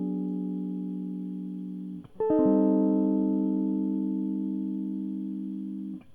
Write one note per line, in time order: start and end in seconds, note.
2.21 4.78 A4
2.31 6.00 D#4
2.40 6.06 C4
2.46 6.00 G3